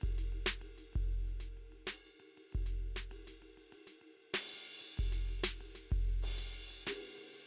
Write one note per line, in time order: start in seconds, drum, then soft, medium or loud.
0.01 kick medium
0.01 hi-hat pedal medium
0.01 ride medium
0.18 snare soft
0.32 ride soft
0.46 snare loud
0.61 hi-hat pedal medium
0.61 ride medium
0.78 snare soft
0.93 kick medium
0.93 ride soft
1.25 hi-hat pedal medium
1.25 ride soft
1.25 floor tom soft
1.40 snare soft
1.57 ride soft
1.72 ride soft
1.86 snare medium
1.86 hi-hat pedal medium
1.86 ride bell medium
2.07 snare soft
2.20 ride soft
2.38 ride soft
2.51 kick soft
2.51 hi-hat pedal medium
2.51 ride soft
2.66 snare soft
2.82 ride soft
2.96 snare medium
3.10 hi-hat pedal medium
3.10 ride medium
3.27 snare soft
3.42 ride soft
3.57 ride soft
3.72 hi-hat pedal medium
3.72 ride medium
3.87 snare soft
4.01 ride soft
4.17 ride soft
4.34 snare loud
4.34 hi-hat pedal medium
4.34 ride medium
4.54 snare soft
4.67 ride soft
4.81 ride soft
4.97 kick medium
4.97 hi-hat pedal medium
4.97 ride medium
5.12 snare soft
5.29 ride soft
5.44 snare loud
5.56 hi-hat pedal medium
5.61 ride medium
5.75 snare soft
5.91 kick medium
5.91 ride soft
6.09 snare soft
6.20 hi-hat pedal medium
6.20 ride medium
6.38 snare soft
6.53 ride soft
6.71 ride soft
6.85 snare medium
6.85 hi-hat pedal medium
6.85 ride loud
7.18 ride soft
7.34 ride soft